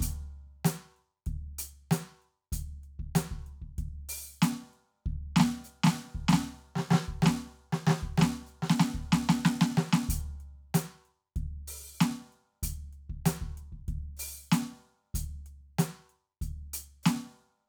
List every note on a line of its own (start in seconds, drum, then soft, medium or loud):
0.01 closed hi-hat loud
0.01 kick medium
0.65 closed hi-hat loud
0.65 snare loud
0.97 closed hi-hat soft
1.27 kick medium
1.27 closed hi-hat soft
1.59 open hi-hat loud
1.91 closed hi-hat loud
1.91 snare loud
1.91 hi-hat pedal medium
2.23 closed hi-hat soft
2.53 closed hi-hat loud
2.53 kick medium
2.84 closed hi-hat soft
3.00 kick medium
3.16 closed hi-hat loud
3.16 snare loud
3.32 kick medium
3.47 closed hi-hat soft
3.62 kick soft
3.79 kick medium
3.79 closed hi-hat soft
4.09 open hi-hat loud
4.42 closed hi-hat loud
4.42 snare loud
4.42 hi-hat pedal medium
4.74 closed hi-hat soft
5.06 kick medium
5.37 snare loud
5.40 snare loud
5.65 hi-hat pedal medium
5.84 snare loud
5.87 snare loud
6.15 kick medium
6.29 snare loud
6.33 snare loud
6.76 snare medium
6.79 snare medium
6.91 snare loud
6.94 snare loud
7.09 kick medium
7.23 snare loud
7.26 snare loud
7.73 snare loud
7.86 snare loud
7.86 hi-hat pedal soft
7.90 snare loud
8.03 kick medium
8.18 snare loud
8.22 snare loud
8.47 hi-hat pedal soft
8.63 snare medium
8.70 snare loud
8.79 snare loud
8.79 hi-hat pedal soft
8.95 kick medium
9.13 snare loud
9.29 snare loud
9.46 snare loud
9.62 snare loud
9.78 snare loud
9.93 snare loud
10.09 closed hi-hat loud
10.09 kick medium
10.41 closed hi-hat soft
10.75 closed hi-hat loud
10.75 snare loud
11.06 closed hi-hat soft
11.37 kick medium
11.37 closed hi-hat soft
11.68 open hi-hat loud
12.01 snare loud
12.01 closed hi-hat medium
12.01 hi-hat pedal medium
12.33 closed hi-hat soft
12.63 closed hi-hat loud
12.63 kick medium
12.93 closed hi-hat soft
13.10 kick medium
13.26 closed hi-hat loud
13.26 snare loud
13.42 kick medium
13.58 closed hi-hat soft
13.73 kick soft
13.89 kick medium
13.89 closed hi-hat soft
14.17 open hi-hat loud
14.17 hi-hat pedal soft
14.52 closed hi-hat medium
14.52 snare loud
14.52 hi-hat pedal medium
15.15 closed hi-hat loud
15.15 kick medium
15.47 closed hi-hat soft
15.79 closed hi-hat loud
15.79 snare loud
16.10 closed hi-hat soft
16.42 closed hi-hat medium
16.42 kick medium
16.74 open hi-hat loud
17.04 closed hi-hat medium
17.04 snare loud
17.04 hi-hat pedal medium